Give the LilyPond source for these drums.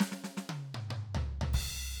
\new DrumStaff \drummode { \time 4/4 \tempo 4 = 120 sn16 sn16 sn16 sn16 tommh8 toml16 toml16 r16 tomfh8 tomfh16 <cymc bd>4 | }